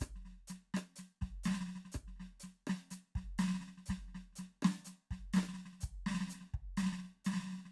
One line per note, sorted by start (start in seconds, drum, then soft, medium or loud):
0.01 kick soft
0.01 cross-stick medium
0.01 snare soft
0.01 hi-hat pedal medium
0.16 snare soft
0.22 snare soft
0.26 snare soft
0.33 snare soft
0.38 snare soft
0.49 snare soft
0.49 hi-hat pedal medium
0.75 cross-stick medium
0.75 snare medium
0.97 snare soft
0.97 hi-hat pedal medium
1.22 kick soft
1.22 snare soft
1.45 snare medium
1.45 hi-hat pedal medium
1.48 snare medium
1.52 snare medium
1.55 snare medium
1.61 snare medium
1.67 snare soft
1.69 snare soft
1.76 snare soft
1.86 snare soft
1.93 kick soft
1.93 cross-stick medium
1.93 hi-hat pedal medium
2.09 snare soft
2.17 snare soft
2.21 snare soft
2.32 snare soft
2.41 snare soft
2.41 hi-hat pedal medium
2.68 cross-stick medium
2.68 snare medium
2.92 snare soft
2.92 hi-hat pedal medium
3.04 snare soft
3.08 snare soft
3.16 kick soft
3.16 snare soft
3.39 snare medium
3.39 hi-hat pedal medium
3.42 snare medium
3.45 snare medium
3.49 snare medium
3.51 snare medium
3.55 snare medium
3.60 snare soft
3.62 snare soft
3.69 snare soft
3.78 snare soft
3.87 kick soft
3.87 snare soft
3.87 hi-hat pedal medium
3.91 snare medium
3.99 snare soft
4.09 snare soft
4.16 snare soft
4.33 snare soft
4.33 hi-hat pedal medium
4.40 snare soft
4.63 cross-stick medium
4.63 snare medium
4.86 snare soft
4.86 hi-hat pedal medium
4.96 snare soft
5.02 snare soft
5.12 kick soft
5.12 snare soft
5.34 snare medium
5.34 hi-hat pedal medium
5.37 cross-stick medium
5.37 snare medium
5.44 cross-stick medium
5.49 snare medium
5.55 snare medium
5.59 snare soft
5.66 snare soft
5.74 snare soft
5.80 snare soft
5.80 hi-hat pedal medium
5.84 kick soft
6.07 snare medium
6.09 snare medium
6.12 snare medium
6.16 snare medium
6.18 snare medium
6.22 snare medium
6.26 snare soft
6.28 snare soft
6.28 hi-hat pedal medium
6.33 snare soft
6.35 snare soft
6.42 snare soft
6.48 snare soft
6.53 kick soft
6.53 snare soft
6.78 snare medium
6.78 hi-hat pedal medium
6.80 snare medium
6.84 snare medium
6.87 snare medium
6.89 snare medium
6.93 snare medium
6.99 snare soft
7.05 snare soft
7.26 snare medium
7.26 hi-hat pedal medium
7.32 snare medium
7.35 snare medium
7.38 snare medium
7.41 snare medium
7.44 snare soft
7.47 snare soft
7.50 snare soft
7.54 snare soft
7.59 snare soft
7.66 snare soft